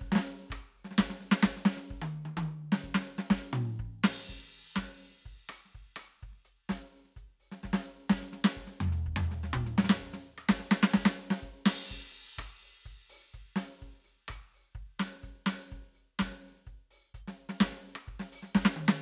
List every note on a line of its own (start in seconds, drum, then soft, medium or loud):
0.01 kick soft
0.12 snare loud
0.15 snare loud
0.18 snare medium
0.50 closed hi-hat medium
0.50 kick soft
0.50 cross-stick medium
0.50 hi-hat pedal soft
0.76 open hi-hat soft
0.85 snare soft
0.91 snare soft
0.98 kick soft
0.98 snare loud
1.10 snare medium
1.20 snare soft
1.31 snare loud
1.43 kick soft
1.43 snare loud
1.43 hi-hat pedal soft
1.57 snare soft
1.65 snare loud
1.77 snare soft
1.90 kick soft
2.02 high tom loud
2.25 high tom medium
2.37 kick soft
2.37 high tom loud
2.45 high tom soft
2.72 snare loud
2.80 kick soft
2.80 snare soft
2.80 hi-hat pedal soft
2.94 snare loud
3.18 snare medium
3.30 kick soft
3.30 snare loud
3.30 hi-hat pedal soft
3.53 mid tom loud
3.78 kick soft
3.78 hi-hat pedal soft
3.84 kick soft
4.03 snare loud
4.03 crash medium
4.19 snare soft
4.26 open hi-hat soft
4.26 kick soft
4.26 snare soft
4.35 snare soft
4.38 snare soft
4.40 snare soft
4.51 open hi-hat soft
4.75 open hi-hat loud
4.75 kick soft
4.75 snare medium
5.02 open hi-hat soft
5.09 snare soft
5.15 snare soft
5.25 kick soft
5.25 closed hi-hat soft
5.49 open hi-hat medium
5.49 cross-stick medium
5.65 snare soft
5.72 kick soft
5.72 open hi-hat soft
5.96 open hi-hat medium
5.96 cross-stick medium
6.21 kick soft
6.21 open hi-hat soft
6.32 snare soft
6.45 open hi-hat soft
6.69 open hi-hat loud
6.69 kick soft
6.69 snare medium
6.93 open hi-hat soft
7.04 snare soft
7.16 closed hi-hat soft
7.16 kick soft
7.40 open hi-hat soft
7.52 snare soft
7.63 kick soft
7.63 snare medium
7.86 cross-stick soft
8.10 kick soft
8.10 snare loud
8.10 hi-hat pedal soft
8.22 snare soft
8.33 snare soft
8.44 snare loud
8.55 kick soft
8.55 snare soft
8.55 hi-hat pedal soft
8.67 snare soft
8.80 floor tom loud
8.92 snare soft
9.04 kick soft
9.04 hi-hat pedal soft
9.16 floor tom loud
9.23 floor tom soft
9.31 snare soft
9.43 snare medium
9.53 kick soft
9.53 hi-hat pedal soft
9.53 mid tom loud
9.66 snare soft
9.78 snare loud
9.84 snare medium
9.89 snare loud
10.00 kick soft
10.04 snare soft
10.13 snare medium
10.38 cross-stick medium
10.49 kick soft
10.49 snare loud
10.49 hi-hat pedal soft
10.59 snare soft
10.71 snare loud
10.83 snare loud
10.94 kick soft
10.94 snare loud
10.94 hi-hat pedal soft
11.05 snare loud
11.30 snare loud
11.42 kick soft
11.65 snare loud
11.65 crash loud
11.85 open hi-hat soft
11.85 cross-stick soft
11.91 kick soft
12.12 open hi-hat medium
12.38 closed hi-hat loud
12.38 kick soft
12.38 cross-stick medium
12.62 open hi-hat soft
12.85 closed hi-hat soft
12.85 kick soft
13.10 open hi-hat medium
13.33 closed hi-hat soft
13.33 kick soft
13.56 open hi-hat loud
13.56 snare medium
13.70 snare soft
13.80 closed hi-hat soft
13.80 kick soft
13.89 snare soft
13.93 snare soft
13.98 snare soft
14.04 open hi-hat soft
14.28 open hi-hat loud
14.28 kick soft
14.28 cross-stick medium
14.54 open hi-hat soft
14.75 closed hi-hat soft
14.75 kick soft
14.99 open hi-hat medium
14.99 snare medium
15.15 snare soft
15.23 closed hi-hat soft
15.23 kick soft
15.46 open hi-hat medium
15.46 snare loud
15.70 open hi-hat soft
15.70 kick soft
15.70 snare soft
15.78 snare soft
15.94 open hi-hat soft
16.19 open hi-hat medium
16.19 kick soft
16.19 snare loud
16.31 snare soft
16.45 open hi-hat soft
16.51 snare soft
16.57 snare soft
16.61 snare soft
16.67 closed hi-hat soft
16.67 kick soft
16.91 open hi-hat medium
17.14 closed hi-hat medium
17.14 kick soft
17.28 snare medium
17.38 open hi-hat soft
17.49 snare medium
17.60 kick soft
17.60 snare loud
17.72 snare soft
17.85 open hi-hat soft
17.95 cross-stick medium
18.06 kick soft
18.06 closed hi-hat soft
18.06 hi-hat pedal soft
18.19 snare medium
18.32 open hi-hat medium
18.42 snare soft
18.55 kick soft
18.55 snare loud
18.65 snare loud
18.76 high tom medium
18.88 snare loud